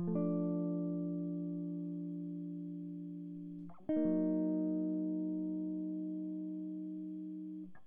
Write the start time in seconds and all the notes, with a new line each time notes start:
0.00 F3
0.08 A3
0.15 D4
3.89 D#4
3.96 A#3
4.06 F#3